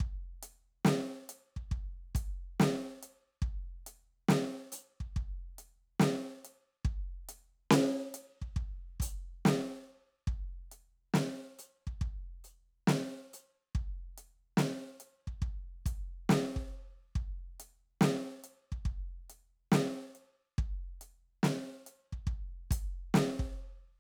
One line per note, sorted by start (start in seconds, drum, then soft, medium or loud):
0.01 kick medium
0.44 closed hi-hat medium
0.86 snare loud
1.30 closed hi-hat medium
1.57 kick soft
1.72 kick medium
1.72 crash soft
2.16 kick medium
2.16 closed hi-hat medium
2.61 snare loud
3.04 closed hi-hat medium
3.43 kick medium
3.87 closed hi-hat medium
4.29 snare loud
4.73 closed hi-hat loud
5.01 kick soft
5.17 kick medium
5.59 closed hi-hat medium
6.01 snare loud
6.46 closed hi-hat medium
6.86 kick medium
7.30 closed hi-hat medium
7.72 snare loud
8.15 closed hi-hat medium
8.43 kick soft
8.57 kick medium
9.01 closed hi-hat loud
9.01 kick medium
9.46 snare loud
10.28 kick medium
10.28 ride soft
10.73 closed hi-hat medium
11.15 snare loud
11.60 closed hi-hat medium
11.88 kick soft
12.02 kick medium
12.45 closed hi-hat soft
12.88 snare loud
13.34 closed hi-hat medium
13.76 kick medium
14.19 closed hi-hat medium
14.58 snare loud
15.01 closed hi-hat medium
15.28 kick soft
15.43 kick medium
15.87 kick medium
15.87 closed hi-hat medium
16.30 snare loud
16.57 kick medium
17.16 kick medium
17.16 ride soft
17.61 closed hi-hat medium
18.02 snare loud
18.45 closed hi-hat medium
18.73 kick medium
18.86 kick medium
18.86 crash soft
19.31 closed hi-hat medium
19.73 snare loud
20.16 closed hi-hat soft
20.59 kick medium
20.59 ride soft
21.02 closed hi-hat medium
21.44 snare loud
21.87 closed hi-hat medium
22.13 kick soft
22.28 kick medium
22.72 kick medium
22.72 closed hi-hat medium
23.15 snare loud
23.40 kick medium